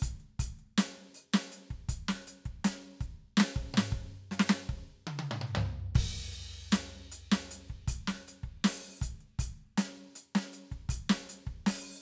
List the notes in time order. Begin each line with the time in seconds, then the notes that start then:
0.01 closed hi-hat, kick, hi-hat pedal
0.20 closed hi-hat
0.40 closed hi-hat, kick
0.59 closed hi-hat
0.78 closed hi-hat, snare
0.97 closed hi-hat
1.14 open hi-hat, hi-hat pedal
1.33 snare, closed hi-hat
1.52 closed hi-hat
1.71 kick, closed hi-hat
1.89 closed hi-hat, kick
2.09 snare
2.27 closed hi-hat
2.46 kick, closed hi-hat
2.65 open hi-hat, snare
3.01 kick, hi-hat pedal
3.37 snare, hi-hat pedal
3.40 snare
3.56 kick
3.73 hi-hat pedal, mid tom
3.78 snare
3.92 kick
4.31 snare
4.40 snare
4.48 snare, hi-hat pedal
4.69 kick
5.07 high tom
5.19 high tom
5.31 mid tom
5.42 mid tom
5.55 floor tom
5.95 kick, ride
6.33 closed hi-hat
6.52 closed hi-hat
6.72 closed hi-hat, snare
7.12 closed hi-hat
7.32 snare, closed hi-hat
7.51 closed hi-hat
7.69 kick, closed hi-hat
7.88 closed hi-hat, kick
8.08 snare, closed hi-hat
8.28 closed hi-hat
8.43 kick, closed hi-hat
8.64 open hi-hat, snare
9.01 closed hi-hat, kick, hi-hat pedal
9.21 closed hi-hat
9.39 closed hi-hat, kick
9.60 closed hi-hat
9.78 closed hi-hat, snare
9.96 closed hi-hat
10.16 closed hi-hat
10.35 snare
10.53 closed hi-hat
10.72 kick, closed hi-hat
10.89 closed hi-hat, kick
11.10 snare
11.29 closed hi-hat
11.47 kick, closed hi-hat
11.67 open hi-hat, snare